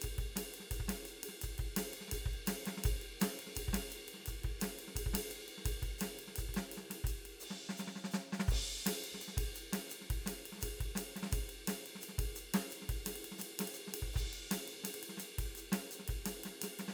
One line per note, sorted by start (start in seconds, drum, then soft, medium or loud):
0.01 kick soft
0.01 hi-hat pedal medium
0.01 ride medium
0.18 kick soft
0.18 ride medium
0.36 snare medium
0.36 hi-hat pedal medium
0.36 ride loud
0.54 ride medium
0.60 snare soft
0.71 kick soft
0.71 hi-hat pedal medium
0.71 ride medium
0.80 kick soft
0.88 snare medium
0.88 ride loud
1.05 hi-hat pedal medium
1.05 ride medium
1.23 ride medium
1.28 snare soft
1.41 kick soft
1.41 hi-hat pedal medium
1.41 ride medium
1.58 kick soft
1.58 ride medium
1.76 snare medium
1.76 hi-hat pedal medium
1.76 ride loud
1.93 ride medium
2.01 snare soft
2.08 snare soft
2.08 ride loud
2.12 kick soft
2.12 hi-hat pedal medium
2.26 kick soft
2.34 ride soft
2.46 snare medium
2.46 hi-hat pedal medium
2.46 ride loud
2.66 snare medium
2.66 ride medium
2.77 snare soft
2.84 kick medium
2.84 hi-hat pedal medium
2.84 ride loud
3.02 ride soft
3.20 snare medium
3.20 hi-hat pedal medium
3.20 ride loud
3.39 ride medium
3.46 snare soft
3.55 kick soft
3.55 hi-hat pedal medium
3.55 ride loud
3.68 kick soft
3.73 snare medium
3.73 ride loud
3.90 hi-hat pedal medium
3.90 ride medium
4.08 ride medium
4.14 snare soft
4.19 snare soft
4.26 kick soft
4.26 hi-hat pedal medium
4.26 ride medium
4.44 kick soft
4.44 ride soft
4.60 snare medium
4.60 hi-hat pedal medium
4.60 ride loud
4.79 ride medium
4.88 snare soft
4.94 kick soft
4.94 snare soft
4.94 hi-hat pedal medium
4.94 ride loud
5.06 kick soft
5.14 snare medium
5.14 ride loud
5.30 hi-hat pedal medium
5.30 ride medium
5.48 ride medium
5.58 snare soft
5.65 kick soft
5.65 hi-hat pedal medium
5.65 ride loud
5.82 kick soft
5.82 ride medium
5.98 snare medium
5.98 hi-hat pedal medium
5.98 ride loud
6.19 ride medium
6.27 snare soft
6.36 kick soft
6.36 hi-hat pedal medium
6.36 ride medium
6.49 kick soft
6.54 snare medium
6.54 ride medium
6.72 hi-hat pedal medium
6.72 ride medium
6.77 snare soft
6.90 snare soft
6.90 ride medium
7.04 kick soft
7.04 hi-hat pedal medium
7.04 ride medium
7.25 ride medium
7.40 hi-hat pedal medium
7.40 ride medium
7.50 snare soft
7.69 snare medium
7.77 snare medium
7.77 hi-hat pedal medium
7.87 snare soft
7.96 snare soft
8.04 snare medium
8.11 snare medium
8.11 hi-hat pedal medium
8.32 snare medium
8.40 snare medium
8.48 kick medium
8.48 hi-hat pedal medium
8.48 ride medium
8.85 snare medium
8.85 hi-hat pedal medium
8.85 ride loud
9.04 ride medium
9.12 kick soft
9.12 snare soft
9.21 hi-hat pedal medium
9.21 ride medium
9.28 snare soft
9.37 kick soft
9.37 ride loud
9.55 hi-hat pedal medium
9.55 ride medium
9.73 snare medium
9.73 ride loud
9.90 hi-hat pedal medium
9.90 ride medium
10.01 snare soft
10.10 kick soft
10.10 ride medium
10.26 snare medium
10.26 hi-hat pedal medium
10.26 ride loud
10.46 ride medium
10.52 snare soft
10.56 snare soft
10.57 snare soft
10.59 kick soft
10.59 snare soft
10.59 hi-hat pedal medium
10.59 ride loud
10.80 kick soft
10.80 ride medium
10.95 snare medium
10.95 hi-hat pedal medium
10.95 ride loud
11.16 snare soft
11.16 ride medium
11.23 snare medium
11.26 snare soft
11.31 kick medium
11.31 hi-hat pedal medium
11.31 ride loud
11.49 ride medium
11.68 snare medium
11.68 hi-hat pedal medium
11.68 ride loud
11.86 ride medium
11.95 snare soft
12.01 hi-hat pedal medium
12.01 ride medium
12.09 snare soft
12.18 kick soft
12.18 ride medium
12.35 hi-hat pedal medium
12.35 ride medium
12.54 snare medium
12.54 ride loud
12.70 hi-hat pedal medium
12.70 ride medium
12.82 snare soft
12.89 kick soft
12.89 ride medium
13.05 snare soft
13.05 hi-hat pedal medium
13.05 ride loud
13.16 ride medium
13.24 ride medium
13.31 snare soft
13.38 snare soft
13.38 hi-hat pedal medium
13.38 ride medium
13.59 snare medium
13.59 ride loud
13.68 ride medium
13.73 hi-hat pedal medium
13.78 ride soft
13.87 snare soft
13.94 ride loud
14.02 kick soft
14.13 kick medium
14.13 hi-hat pedal medium
14.13 ride medium
14.33 ride medium
14.51 snare medium
14.51 hi-hat pedal medium
14.51 ride loud
14.68 ride medium
14.84 snare soft
14.84 hi-hat pedal medium
14.84 ride loud
14.94 ride medium
15.03 ride medium
15.09 snare soft
15.17 snare soft
15.17 hi-hat pedal medium
15.17 ride medium
15.38 kick soft
15.38 ride medium
15.55 hi-hat pedal medium
15.55 ride medium
15.72 snare medium
15.72 ride loud
15.91 hi-hat pedal medium
15.91 ride medium
15.99 snare soft
16.08 kick soft
16.08 ride medium
16.26 snare medium
16.26 hi-hat pedal medium
16.26 ride loud
16.44 snare soft
16.44 ride medium
16.62 snare soft
16.62 hi-hat pedal medium
16.62 ride loud
16.79 snare soft
16.79 ride medium
16.88 snare medium